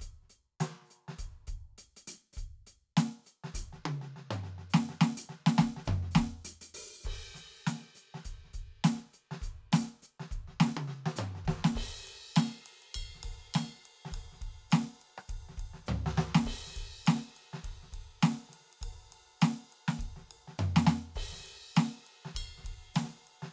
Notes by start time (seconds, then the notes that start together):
0.01 closed hi-hat, kick
0.23 snare
0.31 closed hi-hat
0.61 closed hi-hat, snare
0.87 hi-hat pedal
0.91 closed hi-hat
1.09 snare
1.20 closed hi-hat, kick
1.48 closed hi-hat, kick
1.58 kick
1.79 closed hi-hat
1.98 closed hi-hat
2.08 closed hi-hat
2.34 kick, hi-hat pedal
2.39 closed hi-hat
2.44 kick
2.47 kick
2.68 closed hi-hat
2.98 closed hi-hat, snare
3.25 closed hi-hat, hi-hat pedal
3.45 snare
3.55 closed hi-hat, kick
3.61 kick
3.74 snare
3.87 high tom
4.02 snare
4.17 snare
4.32 hi-hat pedal, mid tom
4.45 snare
4.59 snare
4.71 snare, hi-hat pedal
4.90 snare, hi-hat pedal
5.02 snare
5.18 closed hi-hat
5.30 snare
5.47 snare
5.59 kick, snare
5.78 snare
5.86 kick, floor tom, hi-hat pedal
5.94 kick
5.97 kick
6.04 snare
6.12 hi-hat pedal
6.16 kick, snare
6.46 closed hi-hat
6.62 open hi-hat
6.75 open hi-hat
6.80 kick
7.04 kick, hi-hat pedal, crash
7.12 kick
7.16 kick
7.35 closed hi-hat, snare
7.68 closed hi-hat, snare
7.79 snare
7.96 closed hi-hat, hi-hat pedal
8.15 snare
8.26 closed hi-hat, kick
8.46 snare
8.55 closed hi-hat, kick
8.85 closed hi-hat, snare
8.96 snare
9.14 closed hi-hat
9.32 snare
9.43 closed hi-hat, kick
9.49 kick
9.52 kick
9.63 kick
9.73 open hi-hat, snare
9.84 snare
10.03 hi-hat pedal, open hi-hat
10.21 snare
10.32 kick, closed hi-hat
10.38 kick
10.42 kick
10.49 snare
10.61 snare
10.66 snare
10.78 high tom
10.89 snare
11.07 snare
11.17 hi-hat pedal, mid tom
11.36 snare
11.46 kick, snare
11.54 kick
11.65 snare
11.76 kick, crash
11.83 kick
11.87 kick
11.98 snare
12.01 snare
12.07 snare, ride
12.37 snare, hi-hat pedal, ride bell
12.50 snare
12.67 ride
12.83 ride
12.95 kick, hi-hat pedal, ride bell
13.05 kick
13.16 snare
13.21 snare, ride
13.25 kick
13.31 kick
13.55 snare, hi-hat pedal, ride bell
13.87 ride
14.06 snare
14.12 kick, hi-hat pedal, ride
14.33 snare
14.38 snare
14.42 kick, ride
14.48 kick
14.51 kick
14.71 snare, hi-hat pedal, ride
14.84 snare
15.00 hi-hat pedal, ride
15.19 cross-stick
15.29 kick, hi-hat pedal, ride
15.36 kick
15.39 kick
15.50 snare
15.58 kick, ride
15.68 kick
15.75 snare
15.87 hi-hat pedal, floor tom
16.07 snare
16.19 snare
16.36 snare
16.46 kick, crash
16.52 kick
16.68 snare
16.77 kick, ride
16.83 kick
16.86 kick
17.06 snare, hi-hat pedal, ride
17.16 snare
17.38 ride
17.54 snare
17.65 kick, ride
17.84 snare
17.94 kick, ride
18.23 snare, hi-hat pedal, ride
18.32 snare
18.50 snare, hi-hat pedal
18.54 cross-stick, ride
18.62 snare
18.74 ride
18.81 kick, hi-hat pedal, ride
18.88 kick
19.11 snare, ride
19.42 snare, hi-hat pedal, ride
19.70 hi-hat pedal, ride
19.89 snare
20.00 kick, ride
20.06 kick
20.09 kick
20.17 snare
20.32 ride
20.49 snare
20.59 floor tom, hi-hat pedal
20.77 snare
20.88 snare
21.07 snare
21.16 kick, hi-hat pedal, crash
21.23 kick
21.26 kick
21.33 snare
21.40 snare
21.47 ride
21.76 snare, hi-hat pedal, ride
22.08 ride
22.26 snare
22.35 kick, hi-hat pedal, ride bell
22.42 kick
22.44 kick
22.59 snare
22.65 kick, ride
22.73 kick
22.95 snare, hi-hat pedal, ride
23.04 snare
23.28 ride
23.43 snare